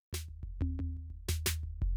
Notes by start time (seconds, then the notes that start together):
0.13 snare, floor tom
0.28 kick
0.43 kick
0.61 floor tom, high tom
0.79 floor tom, high tom
0.97 kick
1.10 kick
1.28 snare, floor tom
1.46 snare, floor tom
1.63 kick
1.82 kick